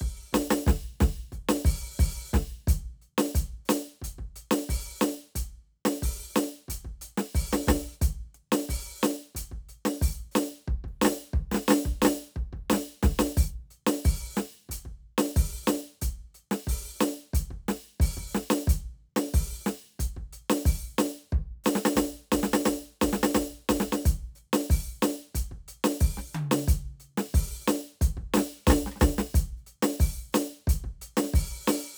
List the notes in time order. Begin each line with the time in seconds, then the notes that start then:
0.01 kick
0.33 kick, snare, hi-hat pedal
0.51 snare
0.67 kick, snare
1.00 kick, snare
1.32 kick, hi-hat pedal
1.49 snare
1.65 open hi-hat, kick
1.99 open hi-hat, kick
2.29 hi-hat pedal
2.33 kick, snare
2.67 closed hi-hat, kick
3.02 closed hi-hat
3.18 snare
3.35 closed hi-hat, kick
3.65 snare, hi-hat pedal
3.70 closed hi-hat
4.02 closed hi-hat, kick
4.18 kick
4.36 closed hi-hat
4.51 snare
4.69 open hi-hat, kick
5.00 snare, hi-hat pedal
5.35 closed hi-hat, kick, snare
5.85 snare
6.02 open hi-hat, kick
6.34 closed hi-hat, snare, hi-hat pedal
6.68 closed hi-hat, kick
6.85 kick
7.01 closed hi-hat
7.18 snare
7.35 open hi-hat, kick
7.53 snare
7.67 kick, snare
7.94 hi-hat pedal
8.01 closed hi-hat, kick
8.34 closed hi-hat
8.52 snare
8.69 open hi-hat, kick
9.01 closed hi-hat, snare, hi-hat pedal
9.35 closed hi-hat, kick
9.51 kick
9.69 closed hi-hat
9.85 snare
10.01 open hi-hat, kick
10.31 kick, snare, hi-hat pedal
10.68 kick
10.84 kick
10.88 crash, ride
11.02 snare
11.05 snare
11.33 kick
11.52 snare
11.54 snare
11.68 snare
11.70 snare
11.85 kick, snare
12.02 snare
12.05 snare
12.36 kick
12.53 kick
12.57 crash
12.70 snare
12.73 snare
13.03 kick, snare
13.19 snare
13.37 open hi-hat, kick
13.70 closed hi-hat, kick
13.87 snare
13.93 cross-stick
14.04 open hi-hat, kick
14.36 snare, hi-hat pedal
14.69 closed hi-hat, kick
14.85 kick
15.18 snare
15.36 open hi-hat, kick
15.66 snare, hi-hat pedal
16.02 closed hi-hat, kick
16.34 closed hi-hat
16.51 snare
16.67 open hi-hat, kick
16.99 snare, hi-hat pedal
17.33 closed hi-hat, kick
17.51 kick
17.68 snare
18.00 open hi-hat, kick, snare
18.17 kick
18.31 snare, hi-hat pedal
18.50 snare
18.67 closed hi-hat, kick
19.16 snare
19.34 open hi-hat, kick
19.66 closed hi-hat, snare, hi-hat pedal
19.99 closed hi-hat, kick
20.17 kick
20.33 closed hi-hat
20.50 snare
20.65 open hi-hat, kick
20.98 snare
21.30 kick, hi-hat pedal
21.64 kick, snare, hi-hat pedal
21.75 snare
21.85 snare
21.95 kick, snare
22.32 kick, snare
22.43 snare
22.53 snare
22.65 kick, snare, hi-hat pedal
23.00 kick, snare, hi-hat pedal
23.13 snare
23.23 snare
23.35 kick, snare
23.69 kick, snare
23.80 snare
23.92 snare
24.05 closed hi-hat, kick
24.35 hi-hat pedal
24.53 snare
24.70 open hi-hat, kick
25.02 snare, hi-hat pedal
25.35 closed hi-hat, kick
25.51 kick
25.68 closed hi-hat
25.84 snare
26.01 kick, open hi-hat
26.17 snare
26.33 hi-hat pedal, mid tom
26.51 snare
26.68 closed hi-hat, kick
27.00 closed hi-hat
27.18 snare
27.34 open hi-hat, kick
27.67 closed hi-hat, snare, hi-hat pedal
28.01 closed hi-hat, kick
28.17 kick
28.34 snare, hi-hat pedal
28.37 snare
28.67 kick, snare, hi-hat pedal
28.70 snare
28.86 snare
28.92 cross-stick
28.96 snare, hi-hat pedal
29.01 kick, snare
29.18 snare
29.34 closed hi-hat, kick
29.57 hi-hat pedal
29.66 closed hi-hat
29.83 snare
30.00 open hi-hat, kick
30.33 closed hi-hat, snare, hi-hat pedal
30.67 closed hi-hat, kick
30.84 kick
31.01 closed hi-hat
31.17 snare
31.23 snare
31.34 open hi-hat, kick
31.51 kick
31.68 open hi-hat, snare